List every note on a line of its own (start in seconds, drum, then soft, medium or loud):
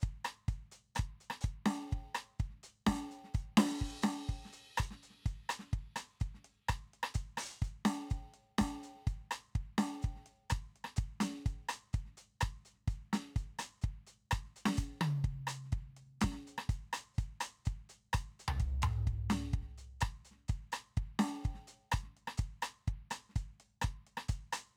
0.01 closed hi-hat soft
0.01 kick soft
0.01 hi-hat pedal soft
0.25 closed hi-hat medium
0.25 cross-stick medium
0.49 closed hi-hat soft
0.49 kick soft
0.72 closed hi-hat soft
0.96 open hi-hat medium
0.96 kick soft
0.96 cross-stick medium
1.21 closed hi-hat soft
1.31 cross-stick medium
1.41 open hi-hat medium
1.41 kick soft
1.66 closed hi-hat medium
1.66 snare medium
1.92 open hi-hat soft
1.92 kick soft
1.92 hi-hat pedal soft
2.15 closed hi-hat medium
2.15 cross-stick medium
2.40 open hi-hat soft
2.40 kick soft
2.50 snare soft
2.55 snare soft
2.64 closed hi-hat soft
2.87 open hi-hat medium
2.87 kick soft
2.87 snare loud
2.95 snare soft
3.12 closed hi-hat soft
3.25 snare soft
3.34 open hi-hat medium
3.34 kick soft
3.34 hi-hat pedal soft
3.58 snare loud
3.58 crash medium
3.69 snare soft
3.80 open hi-hat soft
3.80 kick soft
4.03 closed hi-hat medium
4.03 snare medium
4.29 kick soft
4.29 open hi-hat soft
4.46 snare soft
4.49 snare soft
4.53 closed hi-hat soft
4.78 open hi-hat medium
4.78 kick soft
4.78 cross-stick medium
4.91 snare soft
5.03 closed hi-hat soft
5.11 snare soft
5.14 snare soft
5.17 snare soft
5.23 closed hi-hat soft
5.23 kick soft
5.23 snare soft
5.50 closed hi-hat medium
5.50 cross-stick medium
5.60 snare soft
5.73 kick soft
5.73 closed hi-hat soft
5.96 closed hi-hat medium
5.96 cross-stick medium
6.21 closed hi-hat soft
6.21 kick soft
6.35 snare soft
6.45 closed hi-hat soft
6.69 closed hi-hat medium
6.69 kick soft
6.69 cross-stick medium
6.94 closed hi-hat soft
7.04 cross-stick medium
7.15 closed hi-hat medium
7.15 kick soft
7.38 open hi-hat loud
7.38 cross-stick medium
7.62 closed hi-hat soft
7.62 kick soft
7.62 hi-hat pedal soft
7.86 closed hi-hat loud
7.86 snare loud
8.11 closed hi-hat soft
8.11 kick soft
8.34 closed hi-hat soft
8.59 closed hi-hat loud
8.59 kick soft
8.59 snare loud
8.64 snare soft
8.84 closed hi-hat soft
8.95 snare soft
9.07 closed hi-hat soft
9.07 kick soft
9.31 closed hi-hat medium
9.31 cross-stick medium
9.56 kick soft
9.56 closed hi-hat soft
9.79 closed hi-hat medium
9.79 snare medium
10.03 closed hi-hat soft
10.03 kick soft
10.16 snare soft
10.20 snare soft
10.26 closed hi-hat soft
10.50 closed hi-hat medium
10.50 kick soft
10.50 cross-stick medium
10.76 closed hi-hat soft
10.85 cross-stick medium
10.97 closed hi-hat medium
10.97 kick soft
11.21 closed hi-hat loud
11.21 snare medium
11.46 closed hi-hat soft
11.46 kick soft
11.69 closed hi-hat medium
11.69 cross-stick medium
11.94 closed hi-hat soft
11.94 kick soft
12.06 snare soft
12.12 snare soft
12.18 closed hi-hat soft
12.41 closed hi-hat medium
12.41 kick soft
12.41 cross-stick medium
12.66 closed hi-hat soft
12.74 snare soft
12.88 closed hi-hat soft
12.88 kick soft
13.13 closed hi-hat medium
13.13 snare medium
13.36 closed hi-hat soft
13.36 kick soft
13.59 closed hi-hat loud
13.59 cross-stick medium
13.82 closed hi-hat soft
13.82 kick soft
14.07 closed hi-hat soft
14.32 closed hi-hat medium
14.32 kick soft
14.32 cross-stick medium
14.45 snare soft
14.56 closed hi-hat soft
14.66 snare loud
14.78 closed hi-hat loud
14.78 kick soft
15.01 cross-stick medium
15.01 high tom loud
15.25 kick soft
15.25 closed hi-hat soft
15.48 closed hi-hat loud
15.48 cross-stick medium
15.65 snare soft
15.73 kick soft
15.73 closed hi-hat soft
15.78 snare soft
15.97 closed hi-hat soft
16.21 closed hi-hat medium
16.21 kick soft
16.21 snare medium
16.32 snare soft
16.48 closed hi-hat soft
16.58 cross-stick medium
16.70 closed hi-hat medium
16.70 kick soft
16.93 closed hi-hat medium
16.93 cross-stick medium
17.15 closed hi-hat soft
17.15 kick soft
17.15 hi-hat pedal soft
17.41 closed hi-hat loud
17.41 cross-stick medium
17.66 closed hi-hat soft
17.66 kick soft
17.90 closed hi-hat medium
18.14 closed hi-hat medium
18.14 kick soft
18.14 cross-stick medium
18.40 closed hi-hat medium
18.48 floor tom loud
18.60 kick soft
18.60 closed hi-hat medium
18.83 closed hi-hat medium
18.83 mid tom medium
19.07 kick soft
19.07 closed hi-hat soft
19.30 closed hi-hat medium
19.30 snare medium
19.54 kick soft
19.54 closed hi-hat soft
19.62 snare soft
19.68 snare soft
19.78 closed hi-hat soft
20.01 closed hi-hat medium
20.01 kick soft
20.01 cross-stick medium
20.25 closed hi-hat soft
20.32 snare soft
20.36 snare soft
20.49 closed hi-hat soft
20.49 kick soft
20.73 closed hi-hat medium
20.73 cross-stick medium
20.97 kick soft
20.97 closed hi-hat soft
21.20 closed hi-hat medium
21.20 snare loud
21.26 snare soft
21.44 closed hi-hat soft
21.44 kick soft
21.55 snare soft
21.60 snare soft
21.68 closed hi-hat soft
21.92 open hi-hat medium
21.92 kick soft
21.92 cross-stick medium
22.04 snare soft
22.17 closed hi-hat soft
22.28 cross-stick medium
22.38 closed hi-hat medium
22.38 kick soft
22.62 closed hi-hat medium
22.62 cross-stick medium
22.88 open hi-hat soft
22.88 kick soft
23.11 closed hi-hat medium
23.11 cross-stick medium
23.30 snare soft
23.36 closed hi-hat soft
23.36 kick soft
23.60 closed hi-hat soft
23.82 open hi-hat medium
23.82 kick soft
23.82 cross-stick medium
24.07 closed hi-hat soft
24.18 cross-stick medium
24.29 closed hi-hat medium
24.29 kick soft
24.53 closed hi-hat loud
24.53 cross-stick medium